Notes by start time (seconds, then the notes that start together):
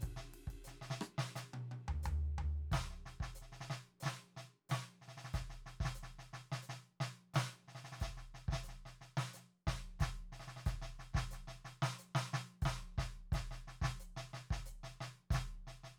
0.01 kick, hi-hat pedal, ride
0.17 snare
0.32 snare, ride
0.48 kick, ride bell
0.64 snare, hi-hat pedal
0.82 snare
0.90 snare
1.01 cross-stick
1.18 snare
1.36 snare, hi-hat pedal
1.54 high tom
1.72 high tom
1.88 floor tom
2.03 floor tom, hi-hat pedal
2.38 floor tom
2.72 kick, snare, hi-hat pedal
2.91 snare
3.06 snare
3.20 kick, snare
3.35 hi-hat pedal
3.42 snare
3.52 snare
3.61 snare
3.70 snare
4.00 snare, hi-hat pedal
4.06 snare
4.37 snare
4.69 snare, hi-hat pedal
4.72 snare
5.02 snare
5.08 snare
5.17 snare
5.25 snare
5.34 kick, snare, hi-hat pedal
5.50 snare
5.66 snare
5.81 kick, snare
5.85 snare
5.95 hi-hat pedal
6.03 snare
6.19 snare
6.33 snare
6.52 snare
6.63 hi-hat pedal
6.69 snare
7.01 snare
7.34 snare, hi-hat pedal
7.36 snare
7.68 snare
7.75 snare
7.84 snare
7.92 snare
7.98 kick, snare, hi-hat pedal
8.17 snare
8.34 snare
8.48 kick, snare
8.53 snare
8.64 hi-hat pedal
8.69 snare
8.86 snare
9.01 snare
9.17 snare
9.34 snare, hi-hat pedal
9.67 kick, snare
10.00 kick, snare, hi-hat pedal
10.02 snare
10.32 snare
10.40 snare
10.48 snare
10.57 snare
10.66 kick, hi-hat pedal
10.82 snare
10.99 snare
11.14 kick, snare
11.16 snare
11.31 snare, hi-hat pedal
11.48 snare
11.65 snare
11.83 snare
11.99 hi-hat pedal
12.15 snare
12.34 snare
12.62 kick, snare, hi-hat pedal
12.98 kick, snare
13.32 kick, snare, hi-hat pedal
13.51 snare
13.68 snare
13.82 kick, snare
13.84 snare
14.00 hi-hat pedal
14.17 snare
14.34 snare
14.51 kick, snare
14.66 hi-hat pedal
14.84 snare
15.01 snare
15.31 kick, snare, hi-hat pedal
15.34 snare
15.67 snare
15.84 snare